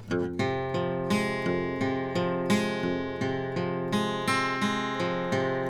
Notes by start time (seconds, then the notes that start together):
0.13 F2
0.41 C3
0.76 F3
1.12 G#3
1.48 F2
1.82 C3
2.17 F3
2.51 G#3
2.85 F2
3.23 C3
3.58 F3
3.94 G#3
4.29 C4
4.63 G#3
5.01 F3
5.34 C3